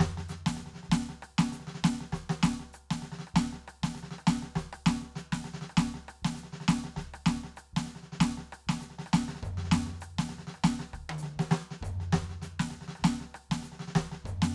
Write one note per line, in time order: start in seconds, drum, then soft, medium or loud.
0.01 kick soft
0.01 snare loud
0.08 kick soft
0.19 snare medium
0.30 snare medium
0.30 hi-hat pedal medium
0.47 kick soft
0.47 snare loud
0.58 snare soft
0.67 snare soft
0.74 snare soft
0.76 snare soft
0.84 snare soft
0.91 kick soft
0.91 snare loud
0.91 hi-hat pedal medium
1.10 snare soft
1.24 cross-stick medium
1.40 kick soft
1.40 snare loud
1.53 snare soft
1.53 hi-hat pedal medium
1.61 snare soft
1.68 snare medium
1.76 snare medium
1.85 kick soft
1.85 snare loud
2.02 snare soft
2.14 kick soft
2.14 snare medium
2.14 hi-hat pedal soft
2.31 snare medium
2.44 kick soft
2.44 snare loud
2.51 kick soft
2.61 snare soft
2.74 cross-stick medium
2.74 hi-hat pedal medium
2.92 kick soft
2.92 snare medium
3.03 snare soft
3.13 snare medium
3.20 snare medium
3.28 cross-stick soft
3.35 kick soft
3.35 snare loud
3.35 hi-hat pedal soft
3.42 kick soft
3.54 snare soft
3.69 cross-stick medium
3.84 kick soft
3.84 snare loud
3.96 snare soft
3.96 hi-hat pedal soft
4.04 snare soft
4.12 snare medium
4.20 cross-stick medium
4.28 kick soft
4.28 snare loud
4.44 snare medium
4.57 kick soft
4.57 snare medium
4.57 hi-hat pedal soft
4.74 cross-stick medium
4.87 kick soft
4.87 snare loud
5.03 snare soft
5.17 snare medium
5.17 hi-hat pedal soft
5.33 kick soft
5.33 snare medium
5.45 snare medium
5.55 snare medium
5.63 snare medium
5.71 cross-stick medium
5.78 kick soft
5.78 snare loud
5.78 hi-hat pedal soft
5.84 kick soft
5.95 snare soft
6.09 cross-stick medium
6.24 kick soft
6.24 snare loud
6.36 snare soft
6.36 hi-hat pedal medium
6.45 snare soft
6.54 snare soft
6.54 snare medium
6.61 snare medium
6.69 kick soft
6.69 snare loud
6.85 snare medium
6.98 kick soft
6.98 snare medium
6.98 hi-hat pedal soft
7.07 kick soft
7.15 cross-stick medium
7.27 kick soft
7.27 snare loud
7.45 snare soft
7.58 cross-stick medium
7.58 hi-hat pedal soft
7.74 kick soft
7.74 snare loud
7.88 snare soft
7.96 snare soft
8.04 snare soft
8.13 snare medium
8.21 kick soft
8.21 snare loud
8.21 hi-hat pedal medium
8.27 kick soft
8.39 snare soft
8.54 cross-stick medium
8.68 kick soft
8.68 snare loud
8.82 snare soft
8.82 hi-hat pedal soft
8.91 snare soft
9.00 snare medium
9.07 cross-stick medium
9.14 kick soft
9.14 snare loud
9.29 snare medium
9.36 snare soft
9.44 kick soft
9.44 floor tom loud
9.44 hi-hat pedal soft
9.52 kick soft
9.59 snare medium
9.65 snare soft
9.73 kick soft
9.73 snare loud
9.88 snare soft
9.93 snare soft
9.98 snare soft
9.98 hi-hat pedal medium
10.03 cross-stick medium
10.19 kick soft
10.19 snare loud
10.30 snare soft
10.40 snare soft
10.48 snare medium
10.55 cross-stick medium
10.59 cross-stick soft
10.65 kick soft
10.65 snare loud
10.65 hi-hat pedal medium
10.81 snare medium
10.95 kick soft
10.95 cross-stick medium
11.03 kick soft
11.11 high tom loud
11.19 hi-hat pedal medium
11.24 snare medium
11.38 kick soft
11.38 snare loud
11.52 snare loud
11.72 snare medium
11.83 kick soft
11.83 floor tom loud
11.83 hi-hat pedal medium
11.89 kick soft
11.92 kick soft
12.01 snare soft
12.14 kick soft
12.14 snare loud
12.31 snare soft
12.43 snare medium
12.43 hi-hat pedal medium
12.60 kick soft
12.60 snare loud
12.72 snare soft
12.82 snare soft
12.89 snare medium
12.96 cross-stick medium
12.96 snare soft
13.04 kick soft
13.04 snare loud
13.04 hi-hat pedal medium
13.22 snare soft
13.36 cross-stick medium
13.51 kick soft
13.51 snare loud
13.64 snare soft
13.64 hi-hat pedal soft
13.73 snare soft
13.81 snare medium
13.89 snare medium
13.96 kick soft
13.96 snare loud
14.13 snare medium
14.26 kick soft
14.26 floor tom loud
14.26 hi-hat pedal soft
14.32 kick soft
14.43 snare loud